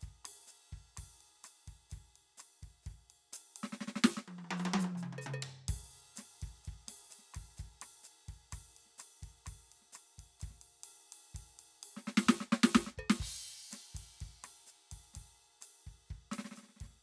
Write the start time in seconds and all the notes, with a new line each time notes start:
0.01 kick, hi-hat pedal, ride
0.08 kick
0.25 cross-stick, ride
0.48 hi-hat pedal
0.73 kick
0.78 kick
0.96 kick, cross-stick, hi-hat pedal, ride
1.04 kick
1.21 ride
1.44 cross-stick, hi-hat pedal, ride
1.68 kick, ride
1.90 kick, hi-hat pedal, ride
1.98 kick
2.16 ride
2.38 cross-stick, snare, hi-hat pedal, ride
2.63 kick, ride
2.83 kick, hi-hat pedal, ride
2.92 kick
3.11 ride
3.33 hi-hat pedal, ride
3.56 ride
3.64 snare
3.73 snare
3.81 snare
3.88 snare
3.96 snare
4.04 snare
4.17 snare
4.28 high tom
4.39 high tom
4.45 high tom
4.51 high tom
4.58 hi-hat pedal, high tom
4.66 high tom
4.74 high tom
4.80 hi-hat pedal
4.85 high tom
4.96 hi-hat pedal, mid tom
5.03 mid tom
5.13 mid tom
5.19 hi-hat pedal, percussion
5.27 mid tom
5.34 percussion
5.43 floor tom
5.69 kick, ride
5.76 kick
6.16 snare, hi-hat pedal, ride
6.42 kick, ride
6.49 kick
6.64 kick, hi-hat pedal, ride
6.73 kick
6.88 snare, ride
7.11 hi-hat pedal, ride
7.19 snare
7.34 kick, cross-stick, ride
7.42 kick
7.57 kick, hi-hat pedal, ride
7.65 kick, snare
7.82 cross-stick, snare, ride
8.04 hi-hat pedal, ride
8.29 kick, ride
8.52 kick, cross-stick, snare, hi-hat pedal, ride
8.58 kick
8.77 ride
8.86 snare
8.99 cross-stick, hi-hat pedal, ride
9.23 kick, ride
9.45 kick, cross-stick, hi-hat pedal, ride
9.53 kick
9.72 ride
9.82 snare
9.93 cross-stick, hi-hat pedal, ride
10.19 kick, ride
10.40 kick, cross-stick, hi-hat pedal, ride, floor tom
10.49 kick, snare
10.54 snare
10.62 ride
10.84 ride
11.13 ride
11.35 kick, ride
11.60 ride
11.84 ride
11.97 snare
12.08 snare
12.18 snare
12.27 kick, snare
12.41 snare
12.53 snare
12.64 snare
12.75 kick, snare
12.87 snare
12.98 kick, percussion
13.03 kick
13.10 snare
13.20 kick, crash
13.71 snare, hi-hat pedal, ride
13.95 kick, ride
14.00 kick
14.21 kick, snare, ride
14.27 kick
14.44 cross-stick, snare, ride
14.67 hi-hat pedal
14.92 kick, ride
15.14 kick, snare, hi-hat pedal, ride
15.22 kick
15.62 cross-stick, hi-hat pedal, ride
15.87 kick, ride
16.08 kick, hi-hat pedal
16.32 snare, ride
16.39 snare
16.45 snare
16.52 snare
16.56 snare, hi-hat pedal, ride
16.63 snare
16.69 snare
16.77 snare
16.81 kick, snare, ride
16.87 kick, snare
16.95 snare